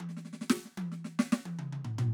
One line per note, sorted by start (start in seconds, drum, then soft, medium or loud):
0.00 high tom medium
0.09 snare soft
0.17 snare soft
0.25 snare soft
0.33 snare soft
0.42 snare medium
0.50 snare loud
0.66 snare soft
0.78 high tom loud
0.92 snare soft
1.05 snare medium
1.20 snare loud
1.33 snare loud
1.46 high tom loud
1.59 mid tom loud
1.73 mid tom medium
1.85 floor tom loud
1.99 floor tom loud